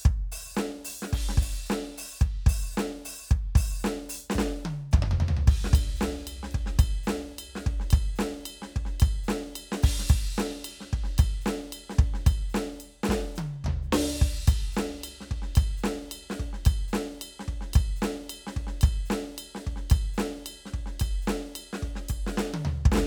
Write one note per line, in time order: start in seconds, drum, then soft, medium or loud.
0.02 kick loud
0.02 hi-hat pedal medium
0.32 open hi-hat loud
0.54 snare loud
0.54 hi-hat pedal medium
0.85 open hi-hat loud
1.02 snare medium
1.07 hi-hat pedal medium
1.13 kick loud
1.13 crash loud
1.29 snare medium
1.37 kick loud
1.42 open hi-hat loud
1.66 snare loud
1.66 hi-hat pedal medium
1.98 open hi-hat loud
2.19 kick loud
2.19 hi-hat pedal medium
2.46 open hi-hat loud
2.46 kick loud
2.73 snare loud
2.73 hi-hat pedal medium
3.05 open hi-hat loud
3.29 kick loud
3.29 hi-hat pedal soft
3.55 open hi-hat loud
3.55 kick loud
3.80 hi-hat pedal soft
3.84 snare loud
4.09 open hi-hat loud
4.30 snare loud
4.30 hi-hat pedal soft
4.35 kick medium
4.35 snare loud
4.65 high tom loud
4.91 kick loud
4.91 hi-hat pedal soft
4.91 mid tom loud
5.02 mid tom loud
5.11 floor tom loud
5.20 floor tom loud
5.28 floor tom loud
5.37 floor tom loud
5.47 kick loud
5.47 crash medium
5.64 snare medium
5.73 kick loud
5.73 ride bell loud
5.96 hi-hat pedal soft
6.01 snare loud
6.27 ride bell loud
6.43 snare medium
6.51 kick medium
6.51 ride soft
6.66 snare medium
6.79 kick loud
6.79 ride bell loud
7.03 snare loud
7.03 hi-hat pedal soft
7.38 ride bell loud
7.55 snare medium
7.66 kick loud
7.80 snare soft
7.90 kick loud
7.90 ride bell loud
8.16 snare loud
8.16 hi-hat pedal soft
8.46 ride bell loud
8.62 snare medium
8.76 kick medium
8.85 snare soft
9.00 kick loud
9.00 ride bell loud
9.24 hi-hat pedal soft
9.28 snare loud
9.56 ride bell loud
9.72 snare loud
9.83 kick loud
9.83 crash loud
9.99 snare medium
10.09 kick loud
10.09 ride bell medium
10.33 hi-hat pedal soft
10.38 snare loud
10.64 ride bell loud
10.80 snare medium
10.93 kick medium
11.04 snare soft
11.18 kick loud
11.18 ride bell loud
11.41 hi-hat pedal soft
11.46 snare loud
11.72 ride bell loud
11.90 snare medium
11.98 kick loud
12.14 snare medium
12.26 kick loud
12.26 ride bell loud
12.49 hi-hat pedal soft
12.54 snare loud
12.80 ride bell medium
13.03 snare loud
13.09 kick medium
13.09 snare loud
13.35 hi-hat pedal medium
13.35 high tom loud
13.64 kick medium
13.64 floor tom loud
13.83 hi-hat pedal soft
13.92 snare loud
13.92 crash loud
14.21 kick loud
14.33 snare soft
14.38 snare soft
14.47 kick loud
14.47 ride bell loud
14.72 hi-hat pedal soft
14.77 snare loud
15.04 ride bell loud
15.20 snare medium
15.31 kick medium
15.42 snare soft
15.55 kick loud
15.55 ride bell loud
15.77 hi-hat pedal soft
15.84 snare loud
16.11 ride bell loud
16.30 snare loud
16.39 kick medium
16.53 snare soft
16.65 kick loud
16.65 ride bell loud
16.88 hi-hat pedal soft
16.93 snare loud
17.21 ride bell loud
17.39 snare medium
17.48 kick medium
17.61 snare soft
17.73 kick loud
17.73 ride bell loud
17.96 hi-hat pedal soft
18.02 snare loud
18.30 ride bell loud
18.47 snare medium
18.56 kick medium
18.67 snare medium
18.81 kick loud
18.81 ride bell loud
19.06 hi-hat pedal soft
19.10 snare loud
19.38 ride bell loud
19.55 snare medium
19.66 kick medium
19.76 snare soft
19.90 kick loud
19.90 ride bell loud
20.14 hi-hat pedal soft
20.18 snare loud
20.46 ride bell loud
20.65 snare medium
20.73 kick medium
20.86 snare soft
21.00 kick loud
21.00 ride bell loud
21.22 hi-hat pedal soft
21.27 snare loud
21.55 ride bell loud
21.73 snare medium
21.82 kick medium
21.95 snare medium
22.09 kick medium
22.09 ride bell medium
22.26 snare loud
22.26 hi-hat pedal soft
22.37 snare loud
22.54 high tom loud
22.65 floor tom loud
22.85 kick loud
22.92 snare loud
22.96 snare loud